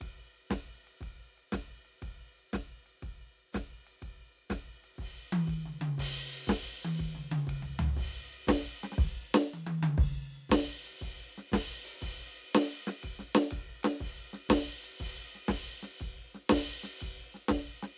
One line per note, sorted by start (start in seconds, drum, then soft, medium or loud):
0.01 kick soft
0.01 ride medium
0.50 kick medium
0.50 snare loud
0.50 hi-hat pedal medium
0.50 ride loud
0.87 ride soft
1.01 kick soft
1.01 ride medium
1.38 ride soft
1.52 kick medium
1.52 snare medium
1.52 hi-hat pedal soft
1.52 ride medium
1.85 ride soft
2.02 kick medium
2.02 ride medium
2.53 kick medium
2.53 snare medium
2.53 hi-hat pedal soft
2.53 ride medium
2.86 ride soft
3.03 kick medium
3.03 ride medium
3.53 kick medium
3.53 snare medium
3.53 hi-hat pedal medium
3.53 ride medium
3.87 ride medium
4.02 kick soft
4.02 ride medium
4.50 kick medium
4.50 snare medium
4.50 hi-hat pedal medium
4.50 ride loud
4.84 ride soft
4.96 kick medium
4.96 hi-hat pedal soft
5.01 ride medium
5.33 high tom loud
5.47 kick medium
5.47 hi-hat pedal soft
5.47 ride medium
5.66 mid tom medium
5.81 mid tom loud
5.98 kick medium
5.98 ride loud
6.47 kick medium
6.47 snare loud
6.47 hi-hat pedal medium
6.47 ride medium
6.85 high tom loud
6.99 kick medium
6.99 ride medium
7.15 mid tom medium
7.32 mid tom loud
7.47 kick medium
7.47 hi-hat pedal soft
7.47 ride loud
7.63 floor tom medium
7.79 floor tom loud
7.97 kick medium
7.97 ride medium
8.47 kick medium
8.47 snare loud
8.47 ride medium
8.84 snare medium
8.92 snare soft
8.98 kick loud
8.98 crash medium
9.34 snare loud
9.54 high tom medium
9.67 high tom loud
9.83 mid tom loud
9.98 kick loud
9.98 crash medium
10.17 closed hi-hat soft
10.50 kick medium
10.50 snare loud
10.50 ride loud
10.88 ride medium
11.02 kick medium
11.02 ride medium
11.38 snare soft
11.51 kick medium
11.51 snare loud
11.51 hi-hat pedal soft
11.51 ride loud
11.85 open hi-hat medium
12.01 kick medium
12.01 hi-hat pedal medium
12.01 ride medium
12.47 hi-hat pedal soft
12.55 snare loud
12.55 ride medium
12.87 snare medium
13.03 kick medium
13.03 ride medium
13.19 snare soft
13.35 snare loud
13.51 kick medium
13.51 ride loud
13.83 snare loud
13.83 ride loud
14.00 kick medium
14.00 ride medium
14.33 snare medium
14.49 kick medium
14.49 snare loud
14.49 hi-hat pedal soft
14.49 ride loud
14.84 ride medium
15.00 kick medium
15.00 ride medium
15.35 snare soft
15.48 kick medium
15.48 snare loud
15.48 hi-hat pedal medium
15.48 ride medium
15.83 snare soft
16.00 kick medium
16.00 ride medium
16.35 snare soft
16.50 kick medium
16.50 snare loud
16.50 hi-hat pedal medium
16.50 ride loud
16.84 snare soft
17.01 kick medium
17.01 ride medium
17.34 snare soft
17.49 kick medium
17.49 snare loud
17.49 hi-hat pedal medium
17.49 ride medium
17.83 snare medium